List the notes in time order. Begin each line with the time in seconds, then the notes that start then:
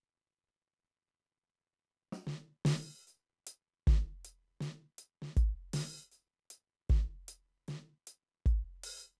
2.12 snare
2.27 snare
2.65 open hi-hat, snare
3.07 closed hi-hat, hi-hat pedal
3.46 closed hi-hat
3.87 kick, snare, closed hi-hat
4.24 closed hi-hat
4.60 snare, closed hi-hat
4.98 closed hi-hat
5.22 snare
5.36 kick, closed hi-hat
5.73 open hi-hat, snare
6.11 closed hi-hat, hi-hat pedal
6.50 closed hi-hat
6.89 kick, snare, closed hi-hat
7.28 closed hi-hat
7.68 snare, closed hi-hat
8.07 closed hi-hat
8.46 kick, closed hi-hat
8.83 open hi-hat